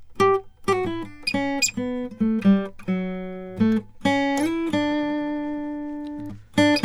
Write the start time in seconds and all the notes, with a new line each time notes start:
0.21 G4
0.70 F#4
0.86 E4 G4
1.04 D4
1.36 C#4
1.79 B3
2.22 A3
2.44 G3
2.90 F#3
3.62 A3
4.07 C#4
4.42 E4
4.75 D4
6.59 D4